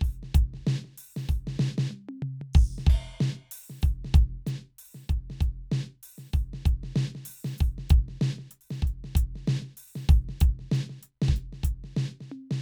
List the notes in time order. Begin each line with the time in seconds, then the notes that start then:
0.01 kick, snare, open hi-hat
0.15 hi-hat pedal
0.23 snare
0.35 closed hi-hat, kick
0.54 kick, snare
0.67 snare
0.84 snare
0.98 open hi-hat
1.17 snare
1.29 kick, open hi-hat
1.47 snare
1.55 kick
1.59 snare
1.78 snare
1.91 mid tom
2.09 high tom
2.22 floor tom
2.42 floor tom
2.54 kick, crash
2.78 snare
2.87 kick, ride
3.21 snare, hi-hat pedal
3.51 open hi-hat
3.70 snare
3.82 kick, open hi-hat
4.05 snare
4.14 kick, closed hi-hat
4.47 snare, closed hi-hat
4.79 open hi-hat
4.86 open hi-hat
4.95 snare
5.09 kick, closed hi-hat, hi-hat pedal
5.30 snare
5.41 kick, closed hi-hat
5.72 snare
6.03 open hi-hat
6.12 open hi-hat
6.18 snare
6.33 kick, open hi-hat
6.54 snare
6.66 kick, closed hi-hat
6.84 snare
6.96 snare
7.15 snare
7.25 open hi-hat
7.45 snare
7.58 kick, open hi-hat
7.64 hi-hat pedal
7.78 snare
7.90 closed hi-hat, kick
8.08 snare
8.21 snare
8.39 snare
8.51 closed hi-hat
8.61 open hi-hat
8.71 snare
8.82 kick, hi-hat pedal
8.87 closed hi-hat
9.04 snare
9.15 closed hi-hat, kick
9.36 snare
9.46 snare, hi-hat pedal
9.62 snare
9.77 open hi-hat
9.88 open hi-hat
9.96 snare
10.09 kick, open hi-hat
10.29 snare
10.41 closed hi-hat, kick
10.59 snare
10.72 snare, hi-hat pedal
10.90 snare
11.03 closed hi-hat
11.22 snare
11.28 kick, hi-hat pedal
11.36 closed hi-hat
11.53 snare
11.64 closed hi-hat, kick
11.84 snare
11.97 snare
12.21 snare
12.32 high tom
12.51 snare